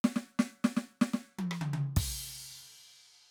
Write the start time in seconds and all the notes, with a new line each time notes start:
0.05 snare
0.16 snare
0.39 snare
0.65 snare
0.77 snare
1.02 snare
1.14 snare
1.39 high tom
1.51 high tom
1.62 mid tom
1.74 mid tom
1.97 kick, ride, crash